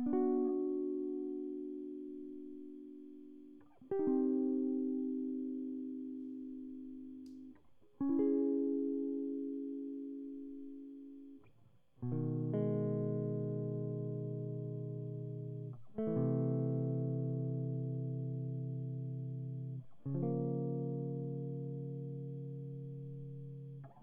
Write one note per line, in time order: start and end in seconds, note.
0.00 3.57 B3
0.07 3.62 D4
0.13 3.34 F#4
3.92 7.24 G4
4.00 7.14 D#4
4.08 7.55 C4
8.01 11.41 C#4
8.10 11.41 E4
8.20 11.07 G#4
12.04 15.79 B2
12.13 15.77 D#3
12.54 15.73 G#3
15.99 19.78 A3
16.08 19.82 E3
16.18 19.84 C3
20.07 23.93 C#3
20.16 23.77 F3
20.23 23.80 A#3